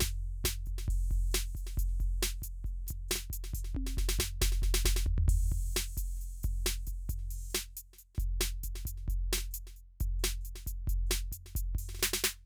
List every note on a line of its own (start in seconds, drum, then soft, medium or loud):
0.01 open hi-hat loud
0.01 kick medium
0.01 snare loud
0.45 closed hi-hat loud
0.45 kick medium
0.45 snare loud
0.67 closed hi-hat soft
0.67 kick soft
0.79 snare soft
0.89 kick medium
0.89 crash medium
1.12 closed hi-hat soft
1.12 kick medium
1.32 snare loud
1.32 hi-hat pedal medium
1.56 kick soft
1.56 closed hi-hat medium
1.67 snare soft
1.78 closed hi-hat medium
1.78 kick medium
1.89 snare soft
2.01 closed hi-hat soft
2.01 kick soft
2.23 snare loud
2.43 closed hi-hat loud
2.43 kick soft
2.65 closed hi-hat soft
2.65 kick soft
2.87 closed hi-hat loud
2.87 kick soft
2.87 snare soft
3.09 snare loud
3.09 hi-hat pedal soft
3.16 snare medium
3.31 closed hi-hat loud
3.31 kick soft
3.45 snare soft
3.54 open hi-hat loud
3.54 kick medium
3.65 snare soft
3.75 kick medium
3.75 high tom loud
3.87 snare medium
3.98 kick medium
3.98 snare medium
4.09 snare loud
4.20 kick medium
4.20 snare loud
4.42 kick medium
4.42 snare loud
4.53 snare soft
4.63 kick soft
4.63 snare medium
4.75 snare loud
4.86 kick medium
4.86 snare loud
4.86 hi-hat pedal soft
4.97 snare medium
5.07 kick medium
5.07 floor tom medium
5.19 floor tom loud
5.29 kick medium
5.29 crash loud
5.51 open hi-hat soft
5.51 kick medium
5.73 snare loud
5.73 hi-hat pedal soft
5.98 closed hi-hat loud
5.98 kick soft
6.17 snare soft
6.22 closed hi-hat medium
6.44 closed hi-hat medium
6.44 kick medium
6.67 snare loud
6.87 kick soft
6.87 closed hi-hat medium
7.10 closed hi-hat medium
7.10 kick medium
7.20 snare soft
7.31 open hi-hat medium
7.51 hi-hat pedal medium
7.55 snare loud
7.77 closed hi-hat loud
7.94 snare soft
7.99 closed hi-hat medium
8.15 kick medium
8.15 snare soft
8.20 closed hi-hat medium
8.41 snare loud
8.64 closed hi-hat loud
8.64 kick soft
8.76 snare soft
8.86 closed hi-hat loud
8.86 kick soft
8.98 snare soft
9.09 closed hi-hat medium
9.09 kick medium
9.33 snare loud
9.39 snare medium
9.52 closed hi-hat loud
9.52 hi-hat pedal soft
9.68 snare soft
9.77 closed hi-hat soft
10.01 closed hi-hat medium
10.01 kick medium
10.20 hi-hat pedal soft
10.25 snare loud
10.42 closed hi-hat medium
10.42 hi-hat pedal soft
10.56 snare soft
10.64 kick soft
10.64 hi-hat pedal soft
10.68 closed hi-hat loud
10.88 closed hi-hat medium
10.88 kick medium
11.07 hi-hat pedal soft
11.12 snare loud
11.33 closed hi-hat loud
11.33 kick soft
11.47 snare soft
11.56 closed hi-hat loud
11.56 kick medium
11.76 kick medium
11.76 open hi-hat medium
11.90 snare soft
11.95 snare soft
11.95 hi-hat pedal soft
12.00 snare soft
12.03 snare loud
12.14 snare loud
12.25 snare loud